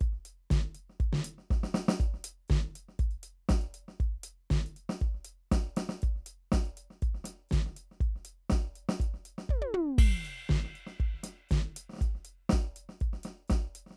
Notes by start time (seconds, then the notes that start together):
0.01 kick, closed hi-hat
0.13 snare
0.26 closed hi-hat
0.51 kick, snare, closed hi-hat
0.75 closed hi-hat
0.90 snare
1.00 kick, closed hi-hat
1.13 snare
1.18 snare
1.25 closed hi-hat
1.39 snare
1.51 kick, snare
1.64 snare
1.75 snare
1.89 snare
2.00 kick, closed hi-hat
2.14 snare
2.25 open hi-hat
2.48 kick, snare, closed hi-hat, hi-hat pedal
2.68 snare
2.76 closed hi-hat
2.89 snare
2.99 kick, closed hi-hat
3.11 closed hi-hat
3.23 open hi-hat
3.49 kick, snare, closed hi-hat
3.62 closed hi-hat
3.74 closed hi-hat
3.89 snare
4.00 kick, closed hi-hat
4.24 closed hi-hat
4.51 kick, snare, closed hi-hat
4.67 closed hi-hat
4.77 closed hi-hat
4.90 snare
5.01 kick, closed hi-hat
5.15 snare
5.25 closed hi-hat
5.52 kick, snare, closed hi-hat
5.77 snare, closed hi-hat
5.89 snare
6.02 closed hi-hat, kick
6.16 snare
6.27 closed hi-hat
6.52 kick, snare, closed hi-hat
6.66 closed hi-hat
6.77 closed hi-hat
6.91 snare
7.02 kick, closed hi-hat
7.15 snare
7.25 open hi-hat, snare
7.49 kick, snare, closed hi-hat, hi-hat pedal
7.66 snare
7.77 closed hi-hat
7.92 snare
8.01 kick, closed hi-hat
8.16 snare
8.25 closed hi-hat
8.50 kick, snare, closed hi-hat
8.67 snare
8.76 closed hi-hat
8.89 snare
9.00 closed hi-hat, kick
9.14 snare
9.26 closed hi-hat
9.39 snare
9.50 kick, high tom
9.62 high tom
9.74 floor tom
9.99 kick, ride
10.23 closed hi-hat, snare
10.50 kick, snare
10.65 snare
10.76 closed hi-hat
10.87 snare
10.99 closed hi-hat, kick
11.14 snare
11.24 open hi-hat, snare
11.49 kick, snare, closed hi-hat, hi-hat pedal
11.77 closed hi-hat
11.90 snare
11.94 snare
11.97 snare
11.99 closed hi-hat, kick, snare
12.15 snare
12.25 closed hi-hat
12.50 closed hi-hat, kick, snare
12.76 closed hi-hat
12.89 snare
13.01 kick, closed hi-hat
13.14 snare
13.24 snare, open hi-hat
13.48 kick, snare, closed hi-hat, hi-hat pedal
13.75 closed hi-hat
13.87 snare
13.91 snare